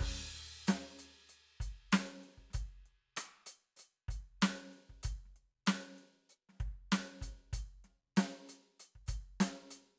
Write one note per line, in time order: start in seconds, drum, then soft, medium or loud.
0.01 kick soft
0.01 crash medium
0.07 kick soft
0.19 snare soft
0.25 snare soft
0.28 snare soft
0.32 snare soft
0.37 closed hi-hat soft
0.68 closed hi-hat medium
0.68 snare loud
0.99 closed hi-hat soft
1.29 closed hi-hat soft
1.60 closed hi-hat soft
1.60 kick soft
1.92 closed hi-hat medium
1.92 snare loud
2.24 closed hi-hat soft
2.38 kick soft
2.50 closed hi-hat medium
2.50 snare soft
2.54 kick soft
2.54 snare soft
2.86 closed hi-hat soft
3.17 closed hi-hat loud
3.17 cross-stick medium
3.47 closed hi-hat medium
3.77 closed hi-hat soft
3.77 hi-hat pedal soft
4.09 closed hi-hat soft
4.09 kick soft
4.42 closed hi-hat medium
4.42 snare loud
4.73 closed hi-hat soft
4.90 kick soft
5.03 closed hi-hat medium
5.03 kick soft
5.25 snare soft
5.36 closed hi-hat soft
5.67 closed hi-hat medium
5.67 snare medium
5.99 closed hi-hat soft
6.30 open hi-hat soft
6.49 snare soft
6.53 snare soft
6.55 snare soft
6.60 kick soft
6.60 closed hi-hat soft
6.68 kick soft
6.92 closed hi-hat medium
6.92 snare medium
7.22 closed hi-hat medium
7.22 kick soft
7.53 closed hi-hat medium
7.53 kick soft
7.84 snare soft
7.84 closed hi-hat soft
8.17 closed hi-hat medium
8.17 snare loud
8.49 closed hi-hat soft
8.80 closed hi-hat soft
8.95 kick soft
9.07 closed hi-hat medium
9.07 kick soft
9.07 hi-hat pedal soft
9.40 closed hi-hat medium
9.40 snare loud
9.71 open hi-hat medium